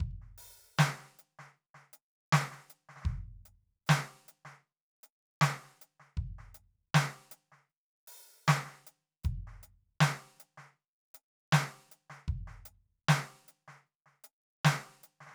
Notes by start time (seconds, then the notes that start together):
0.01 kick, closed hi-hat
0.12 kick
0.22 snare
0.39 open hi-hat
0.78 snare, hi-hat pedal
0.99 snare
1.06 snare
1.20 closed hi-hat
1.40 snare
1.57 closed hi-hat
1.75 snare
1.94 closed hi-hat
2.33 snare
2.52 snare
2.71 closed hi-hat
2.90 snare
2.97 snare
3.03 kick, snare
3.08 snare
3.14 kick
3.46 closed hi-hat
3.87 snare, hi-hat pedal
4.29 closed hi-hat
4.46 snare
5.04 closed hi-hat
5.42 snare
5.64 snare
5.70 snare
5.82 closed hi-hat
6.00 snare
6.18 kick
6.39 snare
6.55 closed hi-hat
6.95 snare
7.01 snare
7.19 snare
7.25 snare
7.32 closed hi-hat
7.53 snare
7.70 closed hi-hat
8.08 open hi-hat
8.48 snare, hi-hat pedal
8.66 snare
8.73 snare
8.87 closed hi-hat
9.24 kick, hi-hat pedal
9.28 closed hi-hat
9.48 snare
9.52 snare
9.54 snare
9.58 snare
9.64 closed hi-hat
10.01 snare
10.41 closed hi-hat
10.58 snare
11.15 closed hi-hat
11.53 snare
11.92 closed hi-hat
12.11 snare
12.29 kick, closed hi-hat
12.48 snare
12.66 closed hi-hat
13.09 snare
13.49 closed hi-hat
13.69 snare
13.88 closed hi-hat
14.07 snare
14.25 closed hi-hat
14.66 snare
14.72 snare
14.88 snare
15.04 closed hi-hat
15.21 snare
15.27 snare
15.32 snare